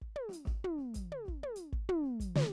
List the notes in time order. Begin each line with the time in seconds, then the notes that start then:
0.02 kick
0.16 high tom
0.30 snare, hi-hat pedal
0.46 kick, snare
0.64 floor tom
0.79 snare
0.95 kick, snare, hi-hat pedal
1.12 high tom
1.26 kick, snare
1.44 high tom
1.57 snare, hi-hat pedal
1.73 kick, snare
1.89 floor tom
2.04 snare
2.20 kick, snare, hi-hat pedal
2.36 snare, high tom